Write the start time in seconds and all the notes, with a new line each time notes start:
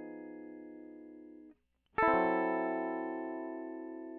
1.99 A4
2.03 E4
2.09 C4
2.15 F#3